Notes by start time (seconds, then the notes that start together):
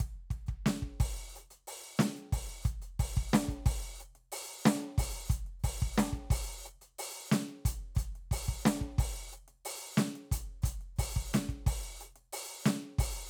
0.00 kick, closed hi-hat
0.30 kick, closed hi-hat
0.46 closed hi-hat, kick
0.66 closed hi-hat, snare
0.82 kick, closed hi-hat
1.00 open hi-hat, kick
1.35 open hi-hat, hi-hat pedal
1.50 closed hi-hat
1.67 open hi-hat
1.98 closed hi-hat, snare, hi-hat pedal
2.15 closed hi-hat
2.32 open hi-hat, kick
2.64 closed hi-hat, kick, hi-hat pedal
2.82 closed hi-hat
2.99 open hi-hat, kick
3.17 kick
3.33 closed hi-hat, snare, hi-hat pedal
3.48 closed hi-hat, kick
3.66 open hi-hat, kick
4.00 open hi-hat, hi-hat pedal
4.15 closed hi-hat
4.32 open hi-hat
4.64 closed hi-hat, snare, hi-hat pedal
4.83 closed hi-hat
4.98 open hi-hat, kick
5.28 closed hi-hat, kick, hi-hat pedal
5.46 closed hi-hat
5.59 hi-hat pedal
5.64 open hi-hat, kick
5.82 kick
5.95 closed hi-hat, snare, hi-hat pedal
6.13 kick, closed hi-hat
6.30 open hi-hat, kick
6.65 open hi-hat, hi-hat pedal
6.81 closed hi-hat
6.98 open hi-hat
7.29 closed hi-hat, snare, hi-hat pedal
7.49 closed hi-hat
7.65 open hi-hat, kick
7.95 closed hi-hat, kick, hi-hat pedal
8.15 closed hi-hat
8.31 open hi-hat, kick
8.48 kick
8.63 closed hi-hat, snare, hi-hat pedal
8.81 kick, closed hi-hat
8.98 open hi-hat, kick
9.32 open hi-hat, hi-hat pedal
9.48 closed hi-hat
9.65 open hi-hat
9.97 closed hi-hat, snare, hi-hat pedal
10.15 closed hi-hat
10.32 open hi-hat, kick
10.62 closed hi-hat, kick, hi-hat pedal
10.81 closed hi-hat
10.96 open hi-hat, kick, hi-hat pedal
11.16 kick
11.31 closed hi-hat, snare, hi-hat pedal
11.49 kick, closed hi-hat
11.66 open hi-hat, kick
12.00 open hi-hat, hi-hat pedal
12.16 closed hi-hat
12.33 open hi-hat
12.64 closed hi-hat, snare, hi-hat pedal
12.82 closed hi-hat
12.98 open hi-hat, kick